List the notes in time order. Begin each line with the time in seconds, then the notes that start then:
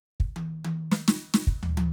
0.20 kick
0.36 high tom
0.65 high tom
0.92 snare
1.08 snare
1.34 snare
1.47 kick
1.63 floor tom
1.78 high tom